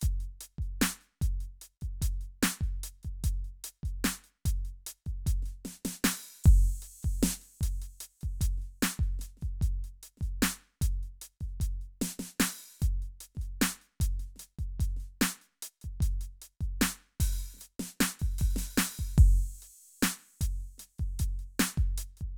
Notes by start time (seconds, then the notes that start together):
0.01 kick, closed hi-hat, hi-hat pedal
0.20 closed hi-hat
0.41 closed hi-hat
0.59 kick, closed hi-hat
0.82 closed hi-hat, snare
1.01 closed hi-hat
1.22 kick, closed hi-hat
1.41 closed hi-hat
1.62 closed hi-hat
1.81 kick, closed hi-hat
2.02 closed hi-hat, kick
2.21 closed hi-hat
2.43 closed hi-hat, snare
2.61 kick, closed hi-hat
2.83 closed hi-hat
3.03 kick, closed hi-hat
3.24 closed hi-hat, kick
3.45 closed hi-hat
3.64 closed hi-hat
3.83 kick, closed hi-hat
4.04 closed hi-hat, snare
4.24 closed hi-hat
4.46 closed hi-hat, kick
4.65 closed hi-hat
4.87 closed hi-hat
5.06 kick, closed hi-hat
5.27 closed hi-hat, kick
5.43 snare, closed hi-hat
5.65 snare, closed hi-hat
5.85 snare, closed hi-hat
6.04 open hi-hat, snare
6.44 kick, hi-hat pedal, crash
6.62 closed hi-hat
6.82 closed hi-hat
7.03 kick, closed hi-hat
7.23 closed hi-hat, snare
7.42 closed hi-hat
7.61 kick, closed hi-hat
7.82 closed hi-hat
8.01 closed hi-hat
8.21 kick, closed hi-hat
8.41 closed hi-hat, kick
8.58 snare
8.62 closed hi-hat
8.83 closed hi-hat, snare
8.99 kick, closed hi-hat
9.19 closed hi-hat, snare
9.37 snare
9.42 kick, closed hi-hat
9.62 kick, closed hi-hat
9.84 closed hi-hat
10.03 closed hi-hat
10.17 kick, snare
10.23 closed hi-hat
10.42 closed hi-hat, snare
10.82 closed hi-hat, kick
11.03 closed hi-hat
11.22 closed hi-hat
11.41 kick, snare, closed hi-hat
11.60 closed hi-hat, kick
11.81 closed hi-hat
12.02 closed hi-hat, snare
12.19 snare, closed hi-hat
12.40 open hi-hat, snare
12.79 closed hi-hat, kick, hi-hat pedal
13.02 closed hi-hat
13.21 closed hi-hat
13.35 kick, snare
13.42 closed hi-hat
13.62 closed hi-hat, snare
13.82 closed hi-hat
14.00 closed hi-hat, kick
14.19 snare, closed hi-hat
14.36 closed hi-hat, snare
14.59 kick, closed hi-hat
14.80 closed hi-hat, kick, snare
14.97 snare, closed hi-hat
15.21 closed hi-hat, snare
15.42 closed hi-hat
15.63 closed hi-hat
15.82 kick, closed hi-hat
16.01 closed hi-hat, kick, snare
16.21 closed hi-hat
16.42 closed hi-hat
16.61 kick, closed hi-hat
16.81 closed hi-hat, snare
17.20 open hi-hat, kick
17.39 open hi-hat
17.54 snare
17.57 snare, hi-hat pedal
17.61 closed hi-hat
17.80 snare, closed hi-hat
18.01 closed hi-hat, snare
18.19 kick, open hi-hat
18.39 open hi-hat, kick
18.56 open hi-hat, snare
18.78 open hi-hat, snare
18.99 kick
19.18 kick, crash
19.58 hi-hat pedal
19.62 closed hi-hat
20.03 closed hi-hat, snare
20.19 closed hi-hat
20.41 closed hi-hat, kick
20.61 closed hi-hat
20.78 closed hi-hat, snare
20.99 kick, closed hi-hat
21.19 closed hi-hat, kick
21.39 closed hi-hat
21.60 closed hi-hat, snare
21.78 kick, closed hi-hat
21.98 closed hi-hat
22.17 closed hi-hat
22.21 kick